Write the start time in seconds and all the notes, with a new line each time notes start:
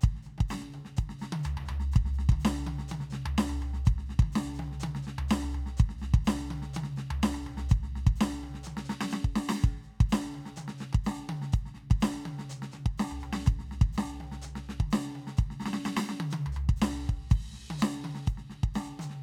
0.01 kick, hi-hat pedal, high tom
0.15 snare
0.23 hi-hat pedal
0.27 high tom
0.38 kick, high tom
0.49 snare, hi-hat pedal
0.62 high tom
0.72 hi-hat pedal, high tom
0.85 snare
0.97 kick, hi-hat pedal, high tom
1.09 snare
1.19 snare, hi-hat pedal
1.32 high tom
1.44 floor tom, hi-hat pedal
1.57 floor tom
1.66 floor tom, hi-hat pedal
1.80 snare
1.92 floor tom, hi-hat pedal
1.96 kick
2.06 snare
2.14 hi-hat pedal
2.19 snare
2.29 kick, high tom
2.40 hi-hat pedal
2.45 snare
2.56 high tom
2.63 hi-hat pedal, high tom
2.79 snare
2.88 hi-hat pedal, high tom
3.00 snare
3.10 snare, hi-hat pedal
3.26 floor tom
3.38 snare, hi-hat pedal
3.50 floor tom
3.60 floor tom, hi-hat pedal
3.74 snare
3.85 kick, floor tom, hi-hat pedal
3.98 snare
4.06 snare, hi-hat pedal
4.19 kick, high tom
4.32 snare, hi-hat pedal
4.47 high tom
4.54 hi-hat pedal
4.59 high tom
4.72 snare
4.80 hi-hat pedal, high tom
4.95 snare
5.03 hi-hat pedal
5.07 snare
5.18 floor tom
5.29 snare, hi-hat pedal
5.43 floor tom
5.51 floor tom, hi-hat pedal
5.66 snare
5.77 kick, floor tom, hi-hat pedal
5.89 snare
5.99 snare, hi-hat pedal
6.14 kick, high tom
6.25 snare, hi-hat pedal
6.40 high tom
6.47 hi-hat pedal, high tom
6.62 snare
6.74 hi-hat pedal, high tom
6.84 snare
6.96 snare, hi-hat pedal
7.11 floor tom
7.23 snare, hi-hat pedal
7.34 floor tom
7.40 kick, hi-hat pedal
7.46 floor tom
7.57 snare
7.69 kick, hi-hat pedal, high tom
7.83 snare
7.96 snare
8.07 kick, high tom
8.16 hi-hat pedal
8.21 snare
8.32 high tom
8.43 high tom
8.54 snare
8.63 hi-hat pedal, high tom
8.77 snare
8.85 hi-hat pedal
8.90 snare
9.01 snare
9.10 snare, hi-hat pedal
9.25 kick
9.33 snare, hi-hat pedal
9.49 snare
9.62 kick, hi-hat pedal
9.83 hi-hat pedal
10.01 kick
10.09 snare, hi-hat pedal
10.24 high tom
10.31 hi-hat pedal, high tom
10.46 snare
10.56 hi-hat pedal, high tom
10.68 snare
10.78 snare, hi-hat pedal
10.93 kick, high tom
11.04 snare, hi-hat pedal
11.17 high tom
11.25 hi-hat pedal, high tom
11.42 snare
11.53 kick, hi-hat pedal, high tom
11.66 snare
11.74 snare, high tom
11.90 kick, high tom
12.01 snare, hi-hat pedal
12.14 high tom
12.22 hi-hat pedal, high tom
12.39 snare
12.50 hi-hat pedal, high tom
12.62 snare
12.72 snare, hi-hat pedal, high tom
12.86 kick, high tom
12.98 snare, hi-hat pedal
13.11 floor tom
13.18 kick, hi-hat pedal
13.23 floor tom
13.33 snare
13.46 kick, floor tom, hi-hat pedal
13.59 snare
13.67 hi-hat pedal
13.71 snare
13.81 kick, high tom
13.93 hi-hat pedal
13.98 snare
14.09 high tom
14.16 hi-hat pedal
14.20 high tom
14.32 snare
14.42 kick, hi-hat pedal, high tom
14.56 snare
14.65 hi-hat pedal
14.69 snare
14.80 kick, high tom
14.91 snare, hi-hat pedal
15.04 high tom
15.13 hi-hat pedal, high tom
15.27 snare
15.37 kick, hi-hat pedal, high tom
15.51 snare
15.59 kick, snare, hi-hat pedal
15.66 snare
15.73 snare
15.85 snare, hi-hat pedal
15.97 snare
16.06 snare, hi-hat pedal
16.20 high tom
16.31 hi-hat pedal, high tom
16.46 floor tom
16.52 hi-hat pedal
16.57 floor tom
16.69 kick
16.77 hi-hat pedal
16.82 snare, crash
17.09 kick
17.30 kick, hi-hat pedal, crash
17.53 snare
17.70 high tom
17.79 snare, hi-hat pedal
17.92 high tom
18.04 high tom
18.15 snare
18.27 kick, hi-hat pedal, high tom
18.38 snare
18.50 snare, high tom
18.64 kick, high tom
18.74 snare, hi-hat pedal
18.87 high tom
18.99 hi-hat pedal, high tom
19.10 snare
19.15 snare